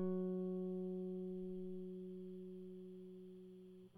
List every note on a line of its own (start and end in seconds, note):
0.00 3.90 F#3